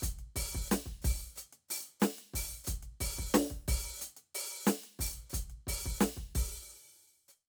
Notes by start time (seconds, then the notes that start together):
0.01 closed hi-hat, kick, hi-hat pedal
0.19 closed hi-hat
0.36 open hi-hat, kick
0.55 kick
0.67 closed hi-hat, hi-hat pedal
0.71 snare
0.86 kick, closed hi-hat
1.02 open hi-hat, kick, hi-hat pedal
1.36 closed hi-hat, hi-hat pedal
1.53 closed hi-hat
1.69 open hi-hat, hi-hat pedal
2.00 closed hi-hat, snare, hi-hat pedal
2.18 closed hi-hat
2.33 open hi-hat, kick, hi-hat pedal
2.64 closed hi-hat, kick, hi-hat pedal
2.83 closed hi-hat
3.00 open hi-hat, kick
3.18 kick
3.31 closed hi-hat, snare, hi-hat pedal
3.50 kick, closed hi-hat
3.68 open hi-hat, kick
3.99 closed hi-hat, hi-hat pedal
4.17 closed hi-hat
4.35 open hi-hat
4.65 closed hi-hat, snare, hi-hat pedal
4.83 closed hi-hat
4.99 open hi-hat, kick, hi-hat pedal
5.30 kick, hi-hat pedal
5.34 closed hi-hat
5.50 closed hi-hat
5.67 open hi-hat, kick
5.86 kick
5.98 closed hi-hat, snare, hi-hat pedal
6.17 kick, closed hi-hat
6.35 open hi-hat, kick
7.28 hi-hat pedal